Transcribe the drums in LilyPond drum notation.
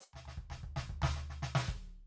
\new DrumStaff \drummode { \time 4/4 \tempo 4 = 116 hhp16 <tomfh sn>16 <tomfh sn>16 bd16 <tomfh sn>16 bd16 <sn tomfh>16 bd16 <tomfh sn>16 sn16 sn16 sn16 sn16 bd8. | }